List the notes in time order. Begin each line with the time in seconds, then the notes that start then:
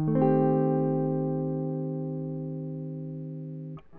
0.00 D#3
0.08 A3
0.16 C4
0.22 G4